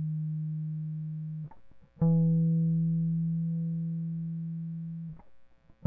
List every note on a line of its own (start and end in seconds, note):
2.03 5.16 E3